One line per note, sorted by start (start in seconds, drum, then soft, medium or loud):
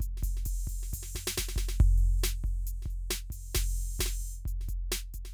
0.01 closed hi-hat medium
0.01 kick medium
0.18 snare soft
0.24 open hi-hat medium
0.24 kick medium
0.37 snare soft
0.46 open hi-hat loud
0.46 kick medium
0.68 open hi-hat medium
0.68 kick medium
0.84 snare soft
0.94 open hi-hat loud
0.94 kick medium
1.04 snare soft
1.16 kick soft
1.16 snare medium
1.28 snare loud
1.38 kick soft
1.38 snare loud
1.49 snare medium
1.57 kick medium
1.57 snare medium
1.69 snare medium
1.81 kick loud
1.81 crash medium
1.98 open hi-hat soft
2.20 hi-hat pedal soft
2.24 closed hi-hat loud
2.24 snare loud
2.45 kick medium
2.45 closed hi-hat soft
2.67 closed hi-hat loud
2.83 kick medium
2.83 snare soft
2.91 closed hi-hat soft
3.11 snare loud
3.31 open hi-hat medium
3.31 kick soft
3.55 open hi-hat loud
3.55 kick medium
3.55 snare loud
4.00 open hi-hat loud
4.00 kick medium
4.00 snare loud
4.07 snare medium
4.21 open hi-hat soft
4.21 kick soft
4.33 hi-hat pedal soft
4.46 kick medium
4.46 closed hi-hat medium
4.62 snare soft
4.69 closed hi-hat medium
4.69 kick soft
4.92 snare loud
5.14 closed hi-hat medium
5.14 kick soft
5.26 snare soft